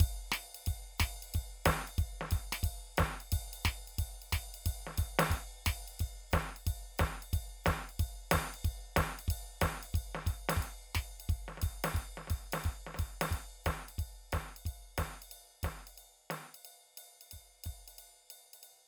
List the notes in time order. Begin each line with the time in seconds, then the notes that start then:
0.00 kick, ride
0.31 snare, hi-hat pedal, ride
0.54 ride
0.66 kick, ride
0.98 kick, snare, hi-hat pedal, ride
1.22 ride
1.34 kick, ride
1.64 kick, snare, hi-hat pedal, ride
1.87 ride
1.98 kick, ride
2.21 snare
2.30 kick, hi-hat pedal, ride
2.52 snare, ride
2.63 kick, ride
2.97 kick, snare, hi-hat pedal, ride
3.20 ride
3.32 kick, ride
3.53 ride
3.63 kick, snare, hi-hat pedal, ride
3.87 ride
3.98 kick, ride
4.22 ride
4.29 kick, snare, hi-hat pedal, ride
4.54 ride
4.66 kick, ride
4.87 snare
4.97 kick, hi-hat pedal, ride
5.19 snare, ride
5.30 kick, ride
5.65 kick, snare, hi-hat pedal, ride
5.88 ride
5.99 kick, ride
6.30 kick, snare, hi-hat pedal, ride
6.56 ride
6.67 kick, ride
6.98 kick, snare, hi-hat pedal, ride
7.22 ride
7.33 kick, ride
7.64 kick, snare, hi-hat pedal, ride
7.89 ride
7.99 kick, ride
8.31 kick, snare, hi-hat pedal, ride
8.54 ride
8.64 kick, ride
8.96 kick, snare, hi-hat pedal, ride
9.19 ride
9.28 kick, ride
9.61 kick, snare, hi-hat pedal, ride
9.83 ride
9.92 kick, hi-hat pedal, ride
10.15 snare
10.26 kick, hi-hat pedal, ride
10.49 snare, ride
10.57 kick
10.62 ride
10.94 kick, snare, hi-hat pedal, ride
11.20 ride
11.29 kick, ride
11.48 snare
11.57 snare
11.62 kick, hi-hat pedal, ride
11.84 snare, ride
11.94 kick, ride
12.17 snare
12.27 kick, snare, hi-hat pedal, ride
12.52 snare, ride
12.64 kick, ride
12.87 snare
12.94 snare, hi-hat pedal
12.99 kick, ride
13.21 snare, ride
13.31 kick, ride
13.63 kick, snare, hi-hat pedal, ride
13.88 ride
13.98 kick, ride
14.32 kick, snare, hi-hat pedal, ride
14.56 ride
14.65 kick, ride
14.97 kick, snare, hi-hat pedal, ride
15.22 ride
15.31 ride
15.63 kick, snare, ride
15.87 ride
15.98 ride
16.30 snare, ride
16.54 ride
16.65 ride
16.97 ride
17.21 ride
17.33 kick
17.64 kick, ride
17.88 ride
17.98 ride
18.30 ride
18.53 ride
18.63 ride